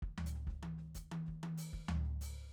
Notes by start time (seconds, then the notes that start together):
0.02 kick
0.18 floor tom
0.26 hi-hat pedal
0.34 snare
0.47 kick, snare
0.63 high tom
0.77 snare
0.94 kick, snare, hi-hat pedal
1.12 high tom
1.25 kick, snare
1.43 high tom
1.56 snare, hi-hat pedal
1.73 kick
1.88 floor tom
2.04 snare
2.21 hi-hat pedal